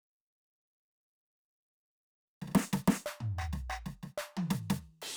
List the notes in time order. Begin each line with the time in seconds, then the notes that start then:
2.41 snare
2.47 snare
2.51 snare
2.55 snare
2.73 snare
2.87 snare
3.06 percussion
3.20 mid tom
3.38 percussion
3.53 snare
3.70 percussion
3.86 snare
4.03 snare
4.17 percussion
4.37 high tom
4.50 snare
4.70 snare
5.02 crash, ride